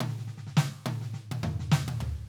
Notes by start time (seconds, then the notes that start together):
0.00 high tom
0.08 snare
0.18 snare
0.27 snare
0.47 snare
0.57 snare
0.78 snare
0.86 high tom
1.01 snare
1.13 snare
1.31 high tom, percussion
1.43 mid tom
1.59 snare
1.72 snare
1.88 high tom
2.00 floor tom